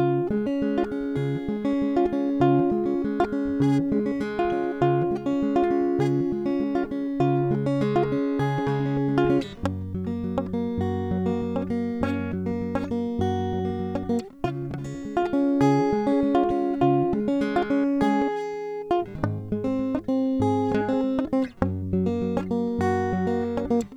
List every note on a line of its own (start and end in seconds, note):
0.01 0.26 C#3
0.01 0.40 C#4
0.01 0.28 F4
0.32 0.52 G#3
0.48 0.86 C#4
0.63 1.42 G#3
0.79 0.87 F4
0.93 1.60 C#4
1.16 1.45 C#3
1.16 1.55 F4
1.16 2.05 G#4
1.50 1.76 G#3
1.66 2.08 C#4
1.83 2.47 G#3
1.98 2.35 F4
2.14 2.74 C#4
2.42 2.65 C#3
2.42 3.06 F4
2.73 2.98 G#3
2.85 3.27 C#4
3.06 3.84 G#3
3.34 4.03 C#4
3.61 3.85 C#3
3.61 3.83 G#4
3.93 4.15 G#3
4.07 4.26 C#4
4.22 4.83 G#3
4.40 4.75 F4
4.51 5.21 C#4
4.83 5.07 C#3
4.83 5.17 F4
5.13 5.35 G#3
5.17 5.47 F4
5.27 5.66 C#4
5.44 6.00 G#3
5.57 6.67 F4
5.72 6.35 C#4
6.00 6.27 C#3
6.00 6.14 G#4
6.34 6.54 G#3
6.47 6.88 C#4
6.62 7.11 G#3
6.76 6.86 F4
6.93 7.54 C#4
7.21 8.23 C#3
7.21 7.58 F4
7.53 7.72 G#3
7.68 7.86 C#4
7.82 8.68 G#3
7.97 8.06 F4
8.14 8.83 C#4
8.40 8.61 C#3
8.40 9.38 G#4
8.68 9.41 C#3
8.87 9.27 C#4
9.10 9.44 G#3
9.19 9.45 F4
9.31 9.41 C#4
9.42 9.56 A2
9.42 9.55 G3
9.57 9.68 C#3
9.65 10.70 F#2
9.65 9.97 A#3
9.96 10.15 F#3
10.09 10.50 A#3
10.26 10.85 F#3
10.55 11.22 A#3
10.79 11.94 F#2
10.79 11.46 F#4
11.12 11.36 F#3
11.27 11.66 A#3
11.44 12.24 F#3
11.57 11.69 C#4
11.72 12.05 A#3
12.03 13.10 F#2
12.03 12.36 A#3
12.03 12.37 C#4
12.35 12.54 F#3
12.48 12.88 A#3
12.63 13.21 F#3
12.76 12.92 C#4
12.93 13.62 A#3
13.21 14.22 F#2
13.21 14.34 F#4
13.54 13.74 F#3
13.66 14.06 A#3
13.81 14.21 F#3
14.11 14.26 A#3
14.45 15.01 C#3
14.45 14.73 F4
14.79 15.06 F4
14.86 15.25 C#4
15.07 15.60 G#3
15.18 15.94 F4
15.35 15.95 C#4
15.62 15.86 C#3
15.62 16.25 G#4
15.94 16.16 G#3
16.08 16.49 C#4
16.25 16.52 G#3
16.36 16.78 F4
16.51 16.80 G#3
16.51 17.23 C#4
16.82 17.09 C#3
16.82 17.14 F4
17.14 17.33 G#3
17.14 17.46 F4
17.29 17.65 C#4
17.42 17.87 G#3
17.57 17.66 F4
17.72 18.33 C#4
18.02 18.26 G#3
18.02 18.85 G#4
19.04 19.16 A2
19.17 19.43 D#3
19.25 20.26 G#2
19.53 19.70 G#3
19.66 20.03 C4
19.80 19.93 G#3
20.10 20.84 C4
20.41 21.53 G#2
20.41 21.06 G#4
20.76 20.97 G#3
20.90 21.28 C4
21.05 21.24 G#3
21.64 22.71 F#2
21.94 22.12 F#3
22.07 22.42 A#3
22.23 22.84 F#3
22.52 23.16 A#3
22.80 23.87 F#2
22.80 23.49 F#4
23.14 23.32 F#3
23.28 23.70 A#3
23.43 23.83 F#3
23.58 23.71 C#4
23.72 23.87 A#3